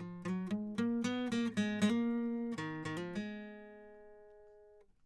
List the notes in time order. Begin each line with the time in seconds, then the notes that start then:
0.01 F3
0.27 F#3
0.52 G#3
0.80 A#3
1.06 B3
1.34 A#3
1.59 G#3
1.84 G#3
1.92 A#3
2.60 D#3
2.87 D#3
2.99 F3
3.17 G#3